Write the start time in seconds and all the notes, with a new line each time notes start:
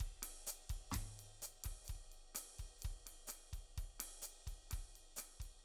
0.01 kick, ride
0.07 kick
0.23 cross-stick, ride
0.48 hi-hat pedal, ride
0.70 kick, ride
0.76 kick
0.91 snare, hi-hat pedal, mid tom, ride
0.96 kick
1.02 kick
1.20 ride
1.43 hi-hat pedal, ride
1.65 kick, cross-stick, ride
1.72 kick
1.85 hi-hat pedal, ride
1.90 kick
1.95 kick
2.13 ride
2.36 cross-stick, hi-hat pedal, ride
2.59 kick, ride
2.65 kick
2.79 hi-hat pedal, ride
2.85 kick
2.91 kick
3.07 cross-stick, ride
3.28 cross-stick, hi-hat pedal, ride
3.54 kick, ride
3.59 kick
3.78 kick, ride
3.84 kick
4.00 cross-stick, snare, ride
4.23 hi-hat pedal, ride
4.48 kick, ride
4.53 kick
4.72 kick, cross-stick, ride
4.79 kick
4.96 ride
5.17 cross-stick, snare, hi-hat pedal, ride
5.41 kick, ride
5.46 kick